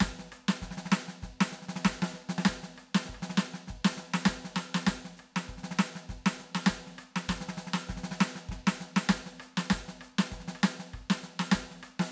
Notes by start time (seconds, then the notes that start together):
0.01 kick, snare
0.19 snare
0.32 cross-stick, hi-hat pedal
0.49 snare
0.62 kick, snare
0.71 snare
0.78 snare
0.86 snare
0.91 snare, hi-hat pedal
0.97 cross-stick
1.09 snare
1.23 kick, snare
1.41 snare
1.51 snare, hi-hat pedal
1.69 snare
1.76 snare
1.85 kick, snare
2.03 snare
2.14 snare, hi-hat pedal
2.22 cross-stick
2.29 snare
2.39 snare
2.46 kick, snare
2.64 snare
2.78 cross-stick, hi-hat pedal
2.95 snare
3.06 kick, snare
3.15 cross-stick
3.19 snare
3.23 snare
3.30 snare
3.38 snare, hi-hat pedal
3.54 snare
3.68 kick, snare
3.85 snare
3.98 snare, hi-hat pedal
4.14 snare
4.26 kick, snare
4.45 snare
4.56 snare, hi-hat pedal
4.75 snare
4.87 kick, snare
5.05 snare
5.18 cross-stick, hi-hat pedal
5.36 snare
5.48 kick, snare
5.58 snare
5.64 snare
5.71 snare
5.78 snare, hi-hat pedal
5.96 snare
6.09 kick, snare
6.26 snare
6.38 snare, hi-hat pedal
6.55 snare
6.67 kick, snare
6.87 snare
6.98 cross-stick, hi-hat pedal
7.16 snare
7.29 kick, snare
7.41 snare
7.49 snare
7.58 snare, hi-hat pedal
7.67 snare
7.74 snare
7.89 kick, snare
7.97 snare
8.04 snare
8.12 snare
8.19 snare, hi-hat pedal
8.36 snare
8.49 kick, snare
8.67 snare
8.78 snare, hi-hat pedal
8.97 snare
9.09 kick, snare
9.26 snare
9.40 cross-stick, hi-hat pedal
9.58 snare
9.71 kick, snare
9.89 snare
10.01 cross-stick, hi-hat pedal
10.19 snare
10.31 kick, snare
10.40 snare
10.48 snare
10.56 cross-stick
10.63 snare, hi-hat pedal
10.80 snare
10.94 kick, cross-stick
11.10 snare
11.22 snare, hi-hat pedal
11.40 snare
11.52 kick, snare
11.71 snare
11.83 cross-stick, hi-hat pedal
12.00 snare